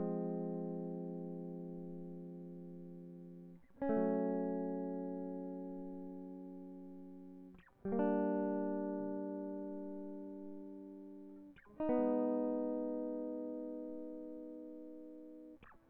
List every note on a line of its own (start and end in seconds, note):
0.00 3.62 F3
0.00 3.01 G#3
0.00 3.56 C4
3.83 7.53 C#4
3.90 6.03 A3
3.98 7.64 F#3
7.86 11.51 G3
7.93 9.64 A#3
8.00 11.54 D4
11.81 15.59 D#4
11.90 15.56 B3